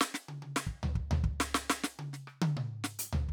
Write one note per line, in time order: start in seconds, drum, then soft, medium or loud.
0.01 snare loud
0.14 snare medium
0.28 high tom medium
0.42 high tom medium
0.56 snare loud
0.67 kick medium
0.83 floor tom loud
0.95 kick medium
1.11 floor tom loud
1.24 kick medium
1.33 kick soft
1.40 snare loud
1.54 snare loud
1.70 snare loud
1.84 snare loud
1.99 high tom medium
2.13 snare medium
2.27 cross-stick medium
2.42 high tom loud
2.57 mid tom medium
2.84 snare loud
2.99 closed hi-hat loud
3.13 floor tom loud
3.28 kick soft